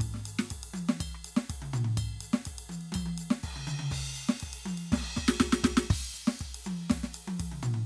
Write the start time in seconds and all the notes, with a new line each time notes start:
0.01 kick, ride, percussion
0.15 snare
0.18 snare
0.26 ride, percussion
0.40 snare
0.51 kick, ride, percussion
0.64 ride
0.74 high tom, percussion
0.90 snare
1.01 kick, ride bell, percussion
1.15 cross-stick
1.25 ride, percussion
1.37 snare
1.50 kick, ride, percussion
1.63 mid tom
1.74 floor tom, percussion
1.85 floor tom
1.98 kick, ride bell, percussion
2.21 ride, percussion
2.34 snare
2.46 kick, ride, percussion
2.59 ride
2.70 high tom, percussion
2.82 ride
2.93 kick, high tom, ride bell
2.97 percussion
3.07 high tom
3.19 ride, percussion
3.31 snare
3.44 kick, percussion, ride
3.57 mid tom
3.68 mid tom, percussion
3.80 mid tom
3.92 kick, crash, percussion
4.16 ride bell, percussion
4.30 snare
4.41 kick, ride, percussion
4.54 ride
4.66 high tom, percussion
4.78 ride
4.93 kick, snare, percussion, ride
5.02 snare
5.17 kick, snare, percussion
5.29 snare
5.41 kick, snare, percussion
5.53 snare
5.64 kick, snare, percussion
5.78 snare
5.91 kick, crash
6.14 ride, percussion
6.28 snare
6.38 kick, ride, percussion
6.55 ride
6.65 high tom, percussion
6.79 ride
6.90 kick, snare, ride, percussion
7.04 snare
7.14 ride, percussion
7.28 high tom
7.38 kick, ride, percussion
7.52 mid tom
7.64 floor tom, percussion
7.75 floor tom